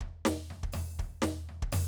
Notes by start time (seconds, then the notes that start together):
0.01 kick, floor tom
0.25 snare, floor tom
0.50 floor tom
0.63 kick
0.72 open hi-hat, floor tom
0.99 kick, floor tom
1.22 snare, floor tom
1.49 floor tom
1.62 kick
1.72 open hi-hat, floor tom